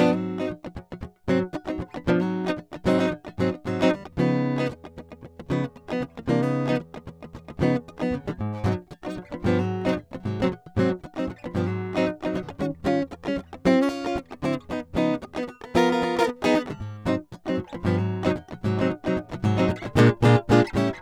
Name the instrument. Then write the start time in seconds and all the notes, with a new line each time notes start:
acoustic guitar
0.00 F3 B3 D4
0.11 F#3 C4
0.15 G#2 D#4
0.41 F#3 C4 D#4
1.30 G#2 F#3 C4
1.72 F#3
2.10 F3 B3 D4
2.14 G2
2.22 F#3 C4 D#4
2.27 G#2
2.50 C4 D#4
2.88 G#2 F#3 C4 D#4
3.02 C4 D#4
3.40 G#2 F#3 C4
3.44 D#4
3.67 G#2 F#3 C4 D#4
3.84 F#3 C4 D#4
3.96 E2 G3
4.20 C#3 B3 D#4
4.61 B3 D#4
5.52 C#3 B3 D#4
5.91 B3 D#4
6.03 C#3
6.29 C3 A#3 D4
6.43 C#3 B3 D#4
6.71 B3 D#4
7.62 C#3 B3 D#4
8.01 B3 D#4
8.14 C#3
8.43 G#2
8.56 G#2
8.66 G#2 F#3 D#4
9.06 D#4
9.11 F#3
9.46 G2 F3 B3 D4
9.59 F#3 C4 D#4
9.65 G#2
9.87 F#3 C4 D#4
10.16 F#3
10.27 G#2 F#3
10.44 F#3 C4
10.78 G#2 F#3 C4
10.83 D#4
11.18 F#3 C4 D#4
11.47 B3
11.56 G2 F3 B3 D4
11.68 G#2 F#3 C4 D#4
11.99 F#3 C4 D#4
12.26 F#3 C4 D#4
12.37 F#3
12.61 D#3 C#4 F4
12.86 D#3 C#4 F4
13.30 C#4
13.68 C4 E4
13.82 D#3 C#4 F4
13.92 F4
13.96 C#4
14.09 C#4 F4
14.18 D#3
14.44 D3 C4 E4
14.62 C#3
14.72 B3 D#4
14.96 C#3 B3 D#4
15.37 B3 D#4
15.77 B3 F4 A#4
15.90 B3 F4 A#4
16.04 B3 F4
16.21 B3 E4 A#4
16.44 B3 D#4 G#4
16.57 B3
16.83 G#2
17.07 F#3 C4 D#4
17.50 F#3 C4 D#4
17.86 G2 F3 B3
17.99 G#2 F#3 C4
18.26 F#3 C4 D#4
18.66 G#2 F#3
18.81 F#3 C4 D#4
19.05 C4 D#4
19.10 F#3
19.46 G#2 F#3
19.59 F#3 C4 D#4
19.98 A#2 G#3 D4 F4
20.24 A#2 G#3 D4 F4
20.51 A#2 G#3 D4 F4
20.76 A2 G3 C#4 E4